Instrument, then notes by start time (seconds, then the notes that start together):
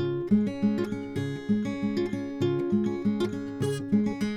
acoustic guitar
0.01 C#3 C#4 F4
0.32 G#3
0.48 C#4
0.63 G#3
0.79 F4
0.93 C#4
1.16 C#3 F4 G#4
1.50 G#3
1.66 C#4
1.83 G#3
1.98 F4
2.14 C#4
2.42 C#3 F4
2.73 G#3
2.85 C#4
3.06 G#3
3.34 C#4
3.61 C#3 G#4
3.93 G#3
4.07 C#4
4.22 G#3